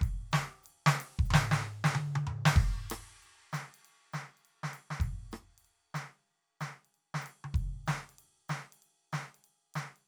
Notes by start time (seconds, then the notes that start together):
0.01 kick, ride
0.31 snare, hi-hat pedal, ride
0.63 hi-hat pedal, ride
0.86 snare, hi-hat pedal
1.00 ride
1.19 kick
1.25 hi-hat pedal
1.31 snare, mid tom
1.51 snare
1.59 snare
1.84 snare
1.95 high tom
2.16 high tom
2.27 mid tom
2.46 snare
2.56 kick, crash
2.90 cross-stick, ride
3.23 ride
3.53 snare, hi-hat pedal, ride
3.74 ride
3.85 ride
4.13 snare, hi-hat pedal
4.37 ride
4.45 ride
4.63 snare
4.73 ride
4.91 snare
5.00 kick, ride
5.31 cross-stick, hi-hat pedal
5.58 ride
5.65 ride
5.94 snare, hi-hat pedal, ride
6.60 snare, hi-hat pedal, ride
6.85 ride
6.94 ride
7.14 snare
7.21 hi-hat pedal
7.26 ride
7.44 high tom
7.54 kick, ride
7.86 snare, hi-hat pedal, ride
8.09 ride
8.19 ride
8.49 snare, hi-hat pedal, ride
8.73 ride
8.82 ride
9.13 snare, hi-hat pedal, ride
9.35 ride
9.44 ride
9.74 snare, hi-hat pedal, ride
9.96 ride